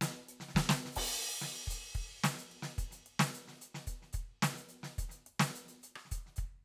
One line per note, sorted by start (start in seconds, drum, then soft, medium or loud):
0.01 closed hi-hat medium
0.01 snare loud
0.12 snare soft
0.29 hi-hat pedal soft
0.29 open hi-hat medium
0.40 snare medium
0.49 snare soft
0.55 kick soft
0.55 snare loud
0.69 snare loud
0.85 snare medium
0.92 hi-hat pedal medium
0.92 crash loud
0.97 kick soft
1.42 snare medium
1.68 closed hi-hat medium
1.68 kick soft
1.73 kick soft
1.73 snare soft
1.95 kick soft
1.95 closed hi-hat soft
2.03 kick soft
2.24 closed hi-hat medium
2.24 snare loud
2.34 snare soft
2.39 closed hi-hat medium
2.52 closed hi-hat soft
2.63 snare medium
2.78 closed hi-hat medium
2.78 kick soft
2.84 kick soft
2.91 closed hi-hat soft
2.91 snare soft
2.97 snare soft
3.06 closed hi-hat soft
3.20 snare loud
3.27 snare soft
3.34 closed hi-hat medium
3.48 snare soft
3.52 snare soft
3.62 closed hi-hat medium
3.75 snare medium
3.87 closed hi-hat medium
3.87 kick soft
4.02 snare soft
4.09 snare soft
4.13 closed hi-hat medium
4.13 kick soft
4.22 kick soft
4.43 closed hi-hat medium
4.43 snare loud
4.53 open hi-hat medium
4.53 snare soft
4.69 closed hi-hat soft
4.69 hi-hat pedal medium
4.83 snare medium
4.96 closed hi-hat medium
4.96 kick soft
4.96 snare soft
5.04 kick soft
5.09 closed hi-hat soft
5.09 snare soft
5.14 snare soft
5.20 snare soft
5.27 closed hi-hat soft
5.40 snare loud
5.48 snare soft
5.55 closed hi-hat medium
5.65 closed hi-hat soft
5.65 snare soft
5.70 snare soft
5.81 closed hi-hat medium
5.81 hi-hat pedal soft
5.96 cross-stick medium
6.05 snare soft
6.12 closed hi-hat medium
6.12 kick soft
6.26 snare soft
6.32 snare soft
6.36 closed hi-hat soft
6.36 kick soft
6.44 kick soft
6.47 kick soft